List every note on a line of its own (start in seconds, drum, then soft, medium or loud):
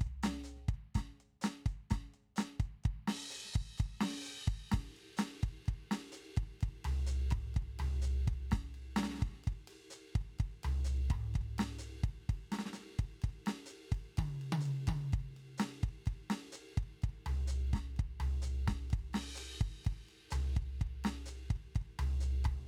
0.01 closed hi-hat soft
0.01 kick soft
0.07 kick soft
0.23 closed hi-hat medium
0.23 snare medium
0.44 closed hi-hat soft
0.44 hi-hat pedal soft
0.57 snare soft
0.69 kick soft
0.69 closed hi-hat soft
0.74 kick soft
0.95 closed hi-hat medium
0.95 kick soft
0.95 snare medium
1.01 kick soft
1.21 closed hi-hat soft
1.42 closed hi-hat medium
1.42 snare medium
1.42 hi-hat pedal medium
1.66 closed hi-hat soft
1.66 kick soft
1.91 closed hi-hat medium
1.91 kick soft
1.91 snare medium
1.98 kick soft
2.14 closed hi-hat soft
2.37 closed hi-hat medium
2.37 snare medium
2.37 hi-hat pedal medium
2.60 closed hi-hat soft
2.60 kick soft
2.66 kick soft
2.84 kick soft
2.84 closed hi-hat soft
3.08 snare medium
3.08 crash medium
3.30 closed hi-hat medium
3.30 hi-hat pedal medium
3.46 snare soft
3.54 closed hi-hat soft
3.54 kick soft
3.62 kick soft
3.78 closed hi-hat medium
3.78 kick soft
3.86 kick soft
4.01 snare medium
4.01 crash medium
4.22 closed hi-hat medium
4.22 hi-hat pedal soft
4.48 closed hi-hat soft
4.48 kick soft
4.54 kick soft
4.72 kick soft
4.72 snare medium
4.72 ride medium
4.80 kick soft
4.97 ride soft
5.18 snare medium
5.18 hi-hat pedal medium
5.18 ride medium
5.43 kick soft
5.43 ride soft
5.49 kick soft
5.66 kick soft
5.66 ride soft
5.74 kick soft
5.92 snare medium
5.92 ride medium
6.13 hi-hat pedal medium
6.13 ride soft
6.37 kick soft
6.37 ride soft
6.44 kick soft
6.61 kick soft
6.61 ride soft
6.69 kick soft
6.85 floor tom loud
6.85 ride medium
7.07 hi-hat pedal medium
7.07 ride soft
7.31 kick soft
7.31 mid tom medium
7.31 ride medium
7.55 kick soft
7.55 ride soft
7.63 kick soft
7.80 floor tom loud
7.80 ride medium
8.02 hi-hat pedal medium
8.02 ride soft
8.28 kick soft
8.28 ride soft
8.33 kick soft
8.52 kick soft
8.52 snare medium
8.52 ride medium
8.59 kick soft
8.75 ride soft
8.97 snare medium
8.97 hi-hat pedal medium
8.97 ride medium
9.04 snare soft
9.10 snare soft
9.15 snare soft
9.19 kick soft
9.19 snare soft
9.25 kick soft
9.25 snare soft
9.29 snare soft
9.33 snare soft
9.37 snare soft
9.40 snare soft
9.42 snare soft
9.42 ride soft
9.45 snare soft
9.48 kick soft
9.48 snare soft
9.53 kick soft
9.68 ride medium
9.91 hi-hat pedal medium
9.91 ride soft
10.16 kick soft
10.16 ride soft
10.16 floor tom soft
10.22 kick soft
10.39 kick soft
10.39 ride soft
10.64 floor tom loud
10.64 ride medium
10.85 hi-hat pedal medium
10.85 ride soft
11.11 kick soft
11.11 mid tom medium
11.11 ride medium
11.16 kick soft
11.35 kick soft
11.35 ride soft
11.41 kick soft
11.59 snare medium
11.59 ride medium
11.79 hi-hat pedal medium
11.79 ride soft
12.04 kick soft
12.04 ride soft
12.10 kick soft
12.30 kick soft
12.30 ride soft
12.52 snare medium
12.52 ride medium
12.59 snare soft
12.66 snare soft
12.74 snare soft
12.74 hi-hat pedal soft
12.74 ride soft
12.81 snare soft
12.87 snare soft
12.91 snare soft
12.96 kick soft
12.96 snare soft
12.96 ride soft
13.00 snare soft
13.05 kick soft
13.05 snare soft
13.23 kick soft
13.23 ride soft
13.30 kick soft
13.47 snare medium
13.47 ride medium
13.66 hi-hat pedal medium
13.71 ride soft
13.92 kick soft
13.92 ride soft
14.18 kick soft
14.18 high tom medium
14.18 ride medium
14.25 kick soft
14.42 ride soft
14.53 high tom loud
14.61 hi-hat pedal medium
14.66 ride soft
14.88 kick soft
14.88 high tom loud
14.88 ride medium
14.94 kick soft
15.13 kick soft
15.13 ride soft
15.20 kick soft
15.37 ride soft
15.58 snare medium
15.58 hi-hat pedal medium
15.58 ride medium
15.84 kick soft
15.84 snare soft
15.84 ride soft
15.89 kick soft
16.07 kick soft
16.07 ride soft
16.13 kick soft
16.31 snare medium
16.31 ride medium
16.53 hi-hat pedal medium
16.53 ride soft
16.78 kick soft
16.78 ride soft
16.83 kick soft
17.03 kick soft
17.03 ride soft
17.10 kick soft
17.27 floor tom medium
17.27 ride medium
17.48 hi-hat pedal medium
17.48 ride soft
17.74 kick soft
17.74 snare medium
17.74 ride soft
17.97 kick soft
17.97 ride soft
18.21 floor tom medium
18.21 ride medium
18.43 hi-hat pedal medium
18.43 ride soft
18.68 kick soft
18.68 snare medium
18.68 ride medium
18.73 kick soft
18.91 kick soft
18.91 ride soft
18.99 kick soft
19.14 snare medium
19.14 crash medium
19.36 hi-hat pedal medium
19.36 ride medium
19.61 kick soft
19.61 ride soft
19.67 kick soft
19.85 kick soft
19.85 ride medium
19.93 kick soft
20.09 ride soft
20.31 floor tom medium
20.31 hi-hat pedal medium
20.31 ride medium
20.56 kick soft
20.56 ride soft
20.63 kick soft
20.81 kick soft
20.81 ride soft
20.87 kick soft
21.05 snare medium
21.05 ride medium
21.26 hi-hat pedal medium
21.26 ride soft
21.51 kick soft
21.51 ride soft
21.56 kick soft
21.76 kick soft
21.76 ride soft
21.82 kick soft
22.00 floor tom loud
22.00 ride medium
22.21 hi-hat pedal medium
22.21 ride soft
22.45 kick soft
22.45 floor tom medium
22.45 ride medium